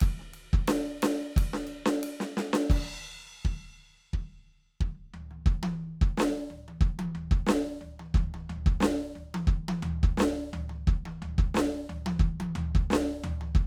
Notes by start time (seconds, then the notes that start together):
0.01 kick, ride
0.20 snare
0.34 ride
0.53 kick, snare
0.68 snare, ride
1.03 snare, ride
1.37 kick, ride
1.54 snare
1.67 ride bell
1.86 snare
2.03 ride
2.21 snare
2.37 snare
2.49 kick
2.54 snare
2.67 kick, snare, crash
3.45 kick
4.14 kick
4.81 kick
4.95 kick
5.14 floor tom
5.31 high tom
5.46 kick
5.63 high tom
6.02 kick
6.18 snare
6.20 snare
6.51 floor tom
6.68 high tom
6.81 kick
6.99 high tom
7.15 floor tom
7.31 kick
7.47 snare
7.49 snare
7.81 floor tom
8.00 high tom
8.15 kick, floor tom
8.34 high tom
8.50 floor tom
8.66 kick
8.81 snare
8.83 snare
9.16 floor tom
9.35 high tom
9.48 kick
9.69 high tom
9.83 floor tom
10.03 kick
10.18 snare
10.21 snare
10.54 floor tom
10.70 high tom
10.88 kick, floor tom
11.06 high tom
11.22 floor tom
11.38 kick
11.55 snare
11.57 snare
11.90 floor tom
12.06 high tom
12.20 kick
12.24 floor tom
12.40 high tom
12.56 floor tom
12.75 kick
12.91 snare
12.94 snare
13.24 floor tom
13.41 high tom
13.55 kick